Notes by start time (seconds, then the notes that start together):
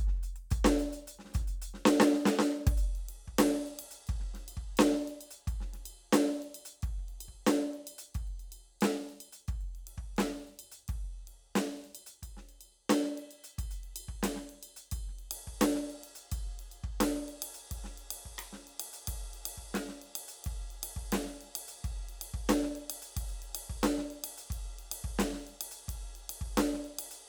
0.07 snare
0.15 snare
0.20 closed hi-hat, snare
0.36 closed hi-hat
0.51 closed hi-hat, kick
0.65 snare
0.79 closed hi-hat
0.93 closed hi-hat
1.08 closed hi-hat
1.19 snare
1.25 snare
1.29 snare
1.33 closed hi-hat, kick, snare
1.36 snare
1.41 snare
1.48 closed hi-hat
1.62 closed hi-hat
1.74 snare
1.86 snare
2.00 snare
2.13 snare
2.26 snare
2.39 snare
2.52 cross-stick
2.67 kick, ride
2.78 open hi-hat
2.96 ride
3.09 ride
3.28 kick
3.39 snare, ride
3.47 snare
3.54 cross-stick, snare
3.66 ride
3.79 ride
3.91 closed hi-hat
4.07 kick, ride bell
4.20 snare
4.34 snare, ride
4.48 ride bell
4.57 kick
4.77 snare, ride bell
4.92 snare
5.08 ride
5.21 ride bell
5.31 closed hi-hat
5.47 kick, ride bell
5.61 snare
5.73 snare, ride
5.86 ride bell
6.13 snare, ride bell
6.27 snare
6.42 ride
6.55 ride bell
6.65 closed hi-hat
6.83 kick, ride
6.98 snare
7.09 snare, ride
7.21 ride bell
7.28 kick
7.47 snare, ride bell
7.62 snare
7.74 ride
7.87 ride bell
7.99 closed hi-hat
8.15 kick, ride bell
8.27 closed hi-hat
8.40 ride bell
8.52 ride bell
8.81 snare, ride bell
9.09 ride
9.21 ride bell
9.33 closed hi-hat
9.48 kick, ride bell
9.61 closed hi-hat
9.75 ride
9.87 ride
9.98 kick
10.17 snare, ride, floor tom
10.47 ride bell
10.59 ride bell
10.72 closed hi-hat
10.88 kick, snare, floor tom, ride
11.28 ride
11.56 snare, ride bell
11.84 ride
11.95 ride bell
12.07 closed hi-hat
12.23 kick, ride bell
12.37 snare
12.49 ride bell
12.61 ride bell
12.90 snare, ride bell
13.04 snare
13.18 ride
13.31 ride bell
13.44 closed hi-hat
13.59 kick, ride bell
13.71 closed hi-hat
13.84 ride
13.96 ride bell
14.09 kick
14.23 snare, ride bell
14.36 snare
14.50 ride
14.63 ride bell
14.77 closed hi-hat
14.92 kick, ride bell
15.08 snare
15.19 ride
15.31 ride
15.47 kick
15.61 snare, ride
15.75 snare
15.90 ride
16.04 ride
16.15 closed hi-hat
16.29 kick, closed hi-hat, ride bell
16.59 ride
16.72 ride bell
16.84 kick
17.01 snare, ride
17.14 snare
17.29 ride
17.42 ride
17.54 closed hi-hat
17.71 kick, ride
17.84 snare
17.98 ride
18.11 ride
18.26 kick
18.39 cross-stick, ride
18.53 snare
18.67 ride
18.80 ride
18.93 closed hi-hat
19.08 kick, ride
19.34 ride
19.46 ride
19.58 kick
19.75 snare, ride
19.89 snare
20.02 ride
20.16 ride
20.28 closed hi-hat
20.45 kick, ride
20.59 closed hi-hat
20.71 ride
20.83 ride
20.96 kick
21.12 snare, ride
21.26 snare
21.41 ride
21.56 ride
21.68 closed hi-hat
21.84 kick, ride
22.09 ride
22.22 ride
22.34 kick
22.49 snare, ride
22.63 snare
22.76 ride
22.90 ride
23.02 closed hi-hat
23.17 kick, ride
23.29 closed hi-hat
23.42 ride
23.55 ride
23.70 kick
23.83 snare, ride bell
23.98 snare
24.11 ride
24.24 ride
24.38 closed hi-hat
24.50 kick, ride
24.79 ride
24.92 ride
25.04 kick
25.19 snare, ride bell
25.33 snare
25.47 ride
25.61 ride
25.71 closed hi-hat
25.89 kick, ride
26.01 closed hi-hat
26.15 ride
26.30 ride
26.41 kick
26.58 snare, ride
26.74 snare
26.85 ride
26.99 ride
27.11 closed hi-hat